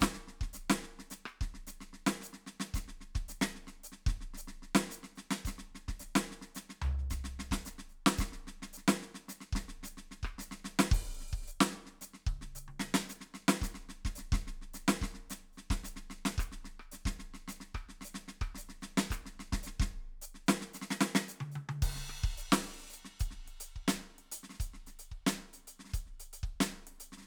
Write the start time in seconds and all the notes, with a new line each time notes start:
0.01 kick, snare, hi-hat pedal
0.14 snare
0.28 snare
0.41 kick, snare
0.54 snare, hi-hat pedal
0.70 snare
0.83 snare
0.99 snare
1.11 snare, hi-hat pedal
1.26 cross-stick
1.41 kick, snare
1.54 snare
1.67 snare, hi-hat pedal
1.81 snare
1.93 snare
2.07 snare
2.21 snare, hi-hat pedal
2.33 snare
2.47 snare
2.60 snare
2.74 kick, snare, hi-hat pedal
2.88 snare
3.01 snare
3.15 kick, snare
3.29 snare, hi-hat pedal
3.42 snare
3.56 snare
3.67 snare
3.84 hi-hat pedal
3.92 snare
4.07 kick, snare
4.21 snare
4.34 snare, hi-hat pedal
4.48 snare
4.63 snare
4.75 snare
4.90 snare, hi-hat pedal
5.04 snare
5.16 snare, hi-hat pedal
5.31 snare
5.45 kick, snare, hi-hat pedal
5.59 snare
5.75 snare
5.89 kick, snare
6.00 snare, hi-hat pedal
6.16 snare
6.32 snare
6.42 snare
6.55 snare, hi-hat pedal
6.70 snare
6.82 floor tom
6.99 snare
7.11 kick, snare, hi-hat pedal
7.25 snare
7.40 snare
7.52 kick, snare
7.66 snare, hi-hat pedal
7.79 snare
7.90 hi-hat pedal
8.07 snare
8.18 kick, snare, hi-hat pedal
8.33 snare
8.47 snare
8.63 snare
8.74 hi-hat pedal
8.78 snare
8.88 snare
9.02 snare
9.15 snare
9.29 snare, hi-hat pedal
9.41 snare
9.53 kick, snare
9.69 snare
9.83 snare, hi-hat pedal
9.98 snare
10.11 snare
10.23 kick, cross-stick
10.39 snare, hi-hat pedal
10.52 snare
10.65 snare
10.79 snare
10.92 open hi-hat, kick
11.21 snare
11.33 kick
11.42 snare
11.45 snare, hi-hat pedal
11.61 snare
11.72 snare
11.86 snare
12.02 snare, hi-hat pedal
12.14 snare
12.27 kick, high tom
12.42 snare
12.56 hi-hat pedal, high tom
12.68 high tom
12.80 snare
12.95 snare
13.10 snare, hi-hat pedal
13.21 snare
13.34 snare
13.49 snare
13.62 kick, snare, hi-hat pedal
13.75 snare
13.89 snare
14.05 kick, snare
14.16 snare, hi-hat pedal
14.32 kick, snare
14.47 snare
14.62 snare
14.74 snare, hi-hat pedal
14.88 snare
15.02 kick, snare
15.14 snare
15.30 snare, hi-hat pedal
15.53 hi-hat pedal
15.58 snare
15.71 kick, snare
15.84 snare, hi-hat pedal
15.96 snare
16.10 snare
16.26 snare
16.38 kick, cross-stick, hi-hat pedal
16.52 snare
16.65 snare
16.80 cross-stick
16.92 snare, hi-hat pedal
17.06 kick, snare
17.20 snare
17.34 snare
17.48 snare, hi-hat pedal
17.61 snare
17.75 kick, cross-stick
17.89 snare
18.01 snare, hi-hat pedal
18.15 snare
18.28 snare
18.42 kick, cross-stick
18.55 snare, hi-hat pedal
18.69 snare
18.82 snare, hi-hat pedal
18.98 snare
19.11 kick, cross-stick, hi-hat pedal
19.26 snare
19.40 snare
19.53 kick, snare
19.63 snare, hi-hat pedal
19.80 kick, snare
20.22 hi-hat pedal
20.35 snare
20.42 snare
20.47 snare, hi-hat pedal
20.62 snare
20.74 snare, hi-hat pedal
20.82 snare
20.91 snare
21.01 snare
21.15 snare
21.29 hi-hat pedal
21.41 high tom
21.52 hi-hat pedal, high tom
21.69 high tom
21.82 kick, hi-hat pedal, crash
21.96 snare
22.10 cross-stick
22.24 kick, closed hi-hat
22.38 hi-hat pedal
22.52 open hi-hat, snare
22.80 open hi-hat
22.90 closed hi-hat, hi-hat pedal
23.05 snare
23.20 closed hi-hat, kick
23.31 snare
23.46 snare, closed hi-hat
23.61 closed hi-hat
23.76 kick
23.88 closed hi-hat, snare
24.19 closed hi-hat
24.32 closed hi-hat
24.44 snare
24.50 snare
24.60 closed hi-hat, kick
24.74 snare
24.87 closed hi-hat, snare
24.99 closed hi-hat
25.12 kick
25.27 closed hi-hat, snare
25.41 snare
25.54 closed hi-hat
25.68 closed hi-hat
25.80 snare
25.85 snare
25.89 snare
25.92 closed hi-hat, kick, snare
26.07 snare
26.13 snare
26.20 closed hi-hat
26.33 closed hi-hat
26.44 kick
26.61 closed hi-hat, snare
26.74 snare
26.87 closed hi-hat
27.00 closed hi-hat
27.12 snare
27.18 snare
27.21 snare